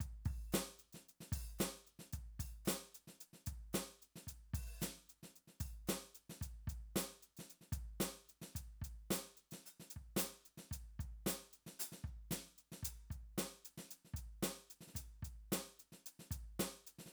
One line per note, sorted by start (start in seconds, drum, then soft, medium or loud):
0.00 kick soft
0.00 closed hi-hat medium
0.25 kick soft
0.25 open hi-hat soft
0.52 snare medium
0.52 closed hi-hat medium
0.52 hi-hat pedal medium
0.79 closed hi-hat soft
0.93 snare soft
0.93 closed hi-hat soft
1.08 closed hi-hat soft
1.21 snare soft
1.32 kick soft
1.32 open hi-hat medium
1.59 snare medium
1.59 closed hi-hat medium
1.59 hi-hat pedal medium
1.87 closed hi-hat soft
1.99 snare soft
2.13 kick soft
2.13 closed hi-hat medium
2.39 kick soft
2.39 open hi-hat medium
2.65 closed hi-hat loud
2.65 snare medium
2.65 hi-hat pedal medium
2.94 closed hi-hat medium
3.07 snare soft
3.20 closed hi-hat medium
3.33 snare soft
3.46 kick soft
3.46 closed hi-hat medium
3.73 snare medium
3.73 closed hi-hat medium
3.73 hi-hat pedal medium
4.02 closed hi-hat soft
4.16 snare soft
4.27 kick soft
4.27 closed hi-hat medium
4.54 kick soft
4.54 open hi-hat medium
4.81 snare medium
4.81 closed hi-hat medium
4.81 hi-hat pedal medium
5.09 closed hi-hat soft
5.23 snare soft
5.36 closed hi-hat soft
5.48 snare soft
5.60 kick soft
5.60 open hi-hat medium
5.87 snare medium
5.87 closed hi-hat medium
5.87 hi-hat pedal medium
6.15 closed hi-hat medium
6.29 snare soft
6.41 kick soft
6.41 closed hi-hat medium
6.67 kick soft
6.67 closed hi-hat medium
6.96 closed hi-hat loud
6.96 snare medium
7.22 closed hi-hat soft
7.37 snare soft
7.37 closed hi-hat soft
7.50 closed hi-hat medium
7.61 snare soft
7.72 kick soft
7.72 closed hi-hat medium
8.00 snare medium
8.00 closed hi-hat loud
8.29 closed hi-hat soft
8.42 snare soft
8.55 kick soft
8.55 closed hi-hat medium
8.82 kick soft
8.82 closed hi-hat medium
9.10 closed hi-hat loud
9.10 snare medium
9.37 closed hi-hat soft
9.51 snare soft
9.51 closed hi-hat soft
9.66 closed hi-hat medium
9.80 snare soft
9.90 closed hi-hat medium
9.96 kick soft
10.16 closed hi-hat loud
10.16 snare medium
10.45 closed hi-hat soft
10.57 snare soft
10.71 kick soft
10.71 closed hi-hat medium
10.99 kick soft
10.99 closed hi-hat soft
11.26 closed hi-hat loud
11.26 snare medium
11.53 closed hi-hat soft
11.66 snare soft
11.79 closed hi-hat loud
11.92 snare soft
12.04 kick soft
12.04 closed hi-hat soft
12.31 snare medium
12.31 closed hi-hat medium
12.58 closed hi-hat soft
12.72 snare soft
12.83 kick soft
12.83 closed hi-hat loud
13.10 kick soft
13.10 closed hi-hat soft
13.38 snare medium
13.38 closed hi-hat loud
13.65 closed hi-hat medium
13.78 snare soft
13.91 closed hi-hat medium
14.05 snare soft
14.14 kick soft
14.14 closed hi-hat medium
14.43 snare medium
14.43 closed hi-hat loud
14.70 closed hi-hat medium
14.81 snare soft
14.87 snare soft
14.94 kick soft
14.94 snare soft
14.94 closed hi-hat medium
15.23 kick soft
15.23 closed hi-hat medium
15.52 snare medium
15.52 closed hi-hat loud
15.79 closed hi-hat soft
15.92 snare soft
16.06 closed hi-hat medium
16.19 snare soft
16.31 kick soft
16.31 closed hi-hat medium
16.59 snare medium
16.59 closed hi-hat medium
16.87 closed hi-hat medium
16.99 snare soft
17.06 snare soft